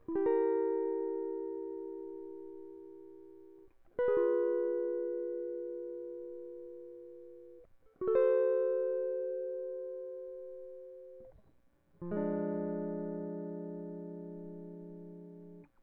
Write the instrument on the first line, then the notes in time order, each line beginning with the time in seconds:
electric guitar
0.09 E4
0.16 G4
0.27 A#4
3.99 B4
4.09 G#4
4.17 F4
8.02 F#4
8.08 A4
8.16 C5
12.03 F3
12.12 G#3
12.17 D4